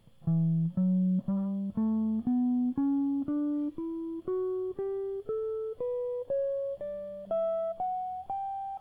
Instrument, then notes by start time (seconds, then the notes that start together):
electric guitar
0.29 E3
0.78 F#3
1.29 G3
1.78 A3
2.28 B3
2.78 C#4
3.29 D4
3.79 E4
4.28 F#4
4.79 G4
5.29 A4
5.81 B4
6.30 C#5
6.83 D5
7.31 E5
7.80 F#5
8.30 G5